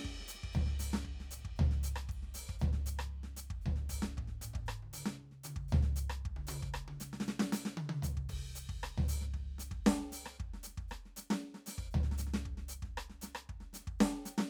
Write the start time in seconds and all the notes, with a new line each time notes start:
0.01 hi-hat pedal
0.05 kick
0.20 snare
0.28 hi-hat pedal
0.34 snare
0.44 kick
0.53 floor tom, hi-hat pedal
0.66 snare
0.80 snare, hi-hat pedal
0.93 snare
1.05 kick
1.20 snare
1.31 hi-hat pedal, mid tom
1.45 kick
1.56 floor tom, hi-hat pedal
1.71 snare
1.83 hi-hat pedal, ride
1.96 cross-stick
2.08 kick, hi-hat pedal, ride
2.23 snare
2.34 snare, hi-hat pedal
2.49 kick
2.59 floor tom, hi-hat pedal
2.73 snare
2.86 hi-hat pedal
2.99 cross-stick
3.23 snare
3.37 snare, hi-hat pedal
3.50 kick
3.62 hi-hat pedal
3.66 floor tom
3.76 snare
3.90 kick, hi-hat pedal
4.02 snare
4.17 kick, mid tom
4.28 snare
4.42 hi-hat pedal, mid tom
4.54 kick, mid tom
4.66 cross-stick, hi-hat pedal
4.83 high tom
4.93 hi-hat pedal, high tom
5.06 snare
5.20 kick, high tom
5.32 snare
5.44 hi-hat pedal, high tom
5.56 kick
5.68 hi-hat pedal
5.73 floor tom
5.83 snare
5.96 kick, hi-hat pedal
6.10 cross-stick
6.25 kick
6.37 high tom
6.47 hi-hat pedal, high tom
6.63 kick
6.73 cross-stick, hi-hat pedal
6.88 high tom
7.00 snare, hi-hat pedal
7.13 snare
7.20 snare
7.26 snare, hi-hat pedal
7.40 snare
7.53 snare, hi-hat pedal
7.65 snare
7.76 hi-hat pedal, high tom
7.90 high tom
8.03 floor tom, hi-hat pedal
8.17 kick
8.29 kick, hi-hat pedal, crash
8.55 hi-hat pedal
8.69 kick
8.83 cross-stick
8.98 floor tom
9.09 snare, hi-hat pedal
9.21 snare
9.34 kick, snare
9.59 snare, hi-hat pedal
9.71 kick, snare
9.85 snare, hi-hat pedal
10.00 snare
10.12 snare, hi-hat pedal
10.26 cross-stick
10.39 kick, snare
10.54 snare
10.63 snare, hi-hat pedal
10.78 kick, snare
10.88 cross-stick, hi-hat pedal
11.06 snare
11.17 snare, hi-hat pedal
11.30 snare
11.41 snare, hi-hat pedal
11.55 snare
11.66 snare, hi-hat pedal
11.78 kick
11.91 floor tom, hi-hat pedal
12.04 snare
12.12 snare
12.18 snare, hi-hat pedal
12.27 snare
12.34 snare
12.46 kick, snare
12.58 snare
12.69 snare, hi-hat pedal
12.83 kick, snare
12.98 cross-stick
13.10 snare
13.22 snare, hi-hat pedal
13.35 cross-stick
13.49 kick, snare
13.60 snare
13.73 snare, hi-hat pedal
13.76 snare
13.87 kick
13.99 snare, hi-hat pedal
14.14 snare
14.26 snare, hi-hat pedal
14.38 snare